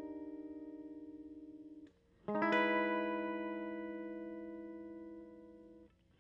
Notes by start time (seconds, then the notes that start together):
2.29 G#3
2.35 D#4
2.42 E4
2.52 B4